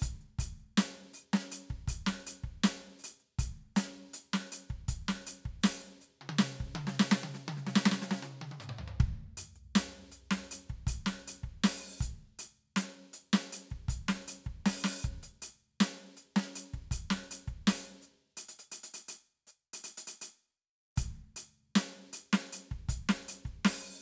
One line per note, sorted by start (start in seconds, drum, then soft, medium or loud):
0.01 closed hi-hat loud
0.01 kick medium
0.01 hi-hat pedal medium
0.22 closed hi-hat soft
0.39 closed hi-hat loud
0.39 kick medium
0.60 closed hi-hat soft
0.78 closed hi-hat loud
0.78 snare loud
1.14 open hi-hat medium
1.34 snare loud
1.52 closed hi-hat loud
1.70 kick soft
1.70 closed hi-hat soft
1.88 closed hi-hat loud
1.88 kick medium
2.07 snare loud
2.27 closed hi-hat loud
2.44 kick soft
2.44 closed hi-hat soft
2.64 open hi-hat loud
2.64 snare loud
3.00 hi-hat pedal medium
3.05 closed hi-hat loud
3.21 closed hi-hat soft
3.39 closed hi-hat loud
3.39 kick medium
3.58 closed hi-hat soft
3.76 closed hi-hat loud
3.76 snare loud
3.76 hi-hat pedal soft
4.14 closed hi-hat loud
4.34 snare loud
4.53 closed hi-hat loud
4.70 kick soft
4.70 closed hi-hat soft
4.89 closed hi-hat loud
4.89 kick medium
5.09 snare medium
5.27 closed hi-hat loud
5.45 kick soft
5.45 closed hi-hat soft
5.61 open hi-hat loud
5.61 snare loud
5.61 hi-hat pedal soft
6.02 hi-hat pedal medium
6.22 high tom medium
6.30 high tom loud
6.39 snare loud
6.39 hi-hat pedal medium
6.61 kick soft
6.74 hi-hat pedal soft
6.74 high tom loud
6.88 snare medium
7.00 snare loud
7.12 snare loud
7.24 high tom loud
7.35 snare medium
7.49 hi-hat pedal soft
7.49 high tom loud
7.57 snare soft
7.67 snare medium
7.76 snare loud
7.86 snare loud
7.92 snare medium
8.03 snare medium
8.12 snare loud
8.23 hi-hat pedal medium
8.23 high tom medium
8.42 high tom medium
8.52 high tom medium
8.61 hi-hat pedal medium
8.61 mid tom medium
8.70 kick soft
8.70 mid tom loud
8.79 floor tom medium
8.88 floor tom soft
9.01 kick loud
9.38 closed hi-hat loud
9.56 closed hi-hat soft
9.76 closed hi-hat loud
9.76 snare loud
10.12 closed hi-hat medium
10.31 snare loud
10.52 closed hi-hat loud
10.70 kick soft
10.70 closed hi-hat soft
10.88 closed hi-hat loud
10.88 kick medium
11.07 snare medium
11.28 closed hi-hat loud
11.44 kick soft
11.64 open hi-hat loud
11.64 snare loud
12.01 closed hi-hat loud
12.01 kick medium
12.01 hi-hat pedal medium
12.19 closed hi-hat soft
12.40 closed hi-hat loud
12.77 closed hi-hat loud
12.77 snare loud
13.14 closed hi-hat medium
13.34 snare loud
13.53 closed hi-hat loud
13.71 kick soft
13.71 closed hi-hat soft
13.89 closed hi-hat loud
13.89 kick medium
14.09 snare loud
14.28 closed hi-hat loud
14.45 kick soft
14.45 closed hi-hat soft
14.66 open hi-hat loud
14.66 snare loud
14.85 open hi-hat loud
14.85 snare loud
15.05 kick medium
15.05 hi-hat pedal medium
15.24 closed hi-hat medium
15.43 closed hi-hat loud
15.81 closed hi-hat loud
15.81 snare loud
16.00 closed hi-hat soft
16.16 closed hi-hat medium
16.16 hi-hat pedal soft
16.37 snare loud
16.56 closed hi-hat loud
16.74 kick soft
16.74 closed hi-hat soft
16.92 closed hi-hat loud
16.92 kick medium
17.11 snare loud
17.32 closed hi-hat loud
17.48 kick soft
17.48 closed hi-hat soft
17.68 open hi-hat loud
17.68 snare loud
18.02 hi-hat pedal medium
18.38 closed hi-hat loud
18.49 closed hi-hat medium
18.60 closed hi-hat medium
18.72 closed hi-hat loud
18.84 closed hi-hat loud
18.95 closed hi-hat loud
19.09 closed hi-hat loud
19.48 hi-hat pedal medium
19.74 closed hi-hat loud
19.85 closed hi-hat loud
19.98 closed hi-hat loud
20.08 closed hi-hat loud
20.22 open hi-hat loud
20.97 closed hi-hat loud
20.97 kick medium
20.97 hi-hat pedal medium
21.17 closed hi-hat soft
21.37 closed hi-hat loud
21.76 closed hi-hat loud
21.76 snare loud
21.96 closed hi-hat soft
22.14 closed hi-hat loud
22.34 snare loud
22.53 closed hi-hat loud
22.72 kick soft
22.72 closed hi-hat soft
22.89 closed hi-hat loud
22.89 kick medium
23.10 snare loud
23.29 closed hi-hat loud
23.46 kick soft
23.46 closed hi-hat soft
23.65 open hi-hat loud
23.65 snare loud